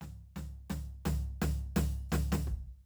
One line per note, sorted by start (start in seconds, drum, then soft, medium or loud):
0.01 snare soft
0.01 floor tom soft
0.36 snare soft
0.36 floor tom medium
0.70 snare medium
0.70 floor tom medium
1.05 snare medium
1.05 floor tom loud
1.42 snare medium
1.42 floor tom loud
1.76 snare loud
1.76 floor tom loud
2.09 snare medium
2.09 floor tom loud
2.09 hi-hat pedal soft
2.32 snare medium
2.32 floor tom loud
2.47 kick medium